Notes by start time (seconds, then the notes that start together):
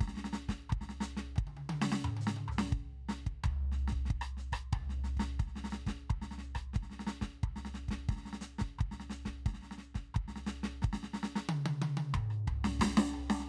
0.01 kick, snare
0.08 snare
0.13 snare
0.17 snare
0.24 snare
0.33 snare, hi-hat pedal
0.49 kick, snare
0.70 kick, floor tom
0.81 snare
0.89 snare
1.01 snare, hi-hat pedal
1.17 snare
1.36 kick, high tom
1.47 high tom
1.57 high tom
1.69 high tom
1.82 snare
1.92 snare
2.01 hi-hat pedal, mid tom
2.17 high tom
2.21 hi-hat pedal
2.27 snare
2.36 high tom
2.48 floor tom, hi-hat pedal
2.58 snare
2.67 cross-stick
2.72 kick
3.09 snare, hi-hat pedal
3.26 kick
3.44 kick, floor tom
3.72 snare
3.77 hi-hat pedal
3.88 snare
3.92 kick
4.05 snare
4.10 kick
4.21 cross-stick
4.37 snare, hi-hat pedal
4.52 kick, cross-stick
4.73 kick, floor tom
4.89 snare
5.04 snare, hi-hat pedal
5.17 kick, snare
5.39 kick, snare
5.47 snare
5.54 snare
5.56 snare
5.64 snare
5.69 snare, hi-hat pedal
5.87 kick, snare
6.10 kick, floor tom
6.22 snare
6.31 snare
6.38 snare
6.42 hi-hat pedal
6.55 kick, cross-stick
6.73 kick, snare
6.83 snare
6.90 snare
6.99 snare
7.07 snare, hi-hat pedal
7.21 kick, snare
7.43 kick, floor tom
7.56 snare
7.65 snare
7.74 snare, hi-hat pedal
7.88 kick, snare
8.09 kick, snare
8.16 snare
8.21 snare
8.25 snare
8.33 snare
8.41 snare, hi-hat pedal
8.59 kick, snare
8.79 kick, floor tom
8.91 snare
9.00 snare
9.10 snare, hi-hat pedal
9.25 kick, snare
9.46 kick, snare
9.54 snare
9.59 snare
9.62 snare
9.71 snare
9.78 snare, hi-hat pedal
9.95 kick, snare
10.14 kick, floor tom
10.28 snare
10.36 snare
10.46 snare, hi-hat pedal
10.63 snare
10.82 kick, snare
10.92 kick, snare
11.13 snare
11.23 snare
11.36 snare
11.49 high tom
11.66 high tom
11.82 high tom
11.97 open hi-hat, high tom
12.14 kick, mid tom
12.30 cross-stick
12.47 kick, floor tom
12.64 snare
12.79 kick, snare
12.97 snare
13.13 floor tom
13.30 snare
13.39 snare